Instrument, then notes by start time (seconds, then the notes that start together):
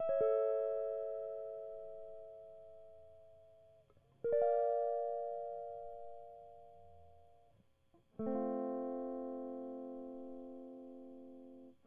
electric guitar
0.00 E5
0.11 C#5
0.21 A4
4.24 A#4
4.32 D5
4.41 F5
8.19 A3
8.26 C4
8.36 F4